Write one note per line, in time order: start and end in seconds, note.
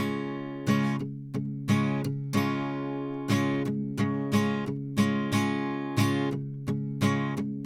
0.00 0.65 C#3
0.00 0.69 G#3
0.00 0.69 C#4
0.00 0.71 F4
0.68 0.99 C#3
0.68 0.99 G#3
0.68 1.01 C#4
0.68 1.01 F4
1.00 1.35 C#3
1.00 1.11 G#3
1.35 1.69 C#3
1.35 1.68 G#3
1.69 2.05 C#3
1.69 2.04 G#3
1.69 2.05 C#4
1.69 2.06 F4
2.05 2.34 C#3
2.05 2.33 A3
2.34 3.29 C#3
2.34 3.31 G#3
2.34 3.32 C#4
2.34 3.33 F4
3.30 3.66 C#3
3.30 3.66 G#3
3.30 3.76 C#4
3.30 3.67 F4
3.66 3.98 C#3
3.66 3.98 G#3
3.98 4.67 C#3
3.98 4.33 G#3
3.98 4.33 C#4
4.33 4.67 G#3
4.33 4.69 C#4
4.33 4.69 F4
4.68 5.96 C#3
4.68 4.78 G#3
4.98 5.33 G#3
4.98 5.32 C#4
4.98 5.35 F4
5.33 5.97 G#3
5.33 5.99 C#4
5.33 6.00 F4
5.98 6.33 C#3
5.98 6.32 G#3
5.98 6.33 C#4
5.98 6.35 F4
6.32 6.68 C#3
6.32 6.44 G#3
6.68 7.02 C#3
6.68 7.01 G#3
7.02 7.38 C#3
7.02 7.38 G#3
7.02 7.45 C#4
7.02 7.39 F4
7.38 7.65 C#3
7.38 7.64 A3